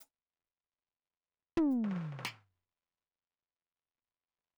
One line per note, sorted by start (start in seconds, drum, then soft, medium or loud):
0.01 hi-hat pedal medium
1.57 floor tom loud
1.71 hi-hat pedal soft
1.85 snare soft
1.92 snare soft
1.97 snare soft
2.02 snare soft
2.05 snare soft
2.13 snare soft
2.20 snare soft
2.26 snare medium
2.26 hi-hat pedal medium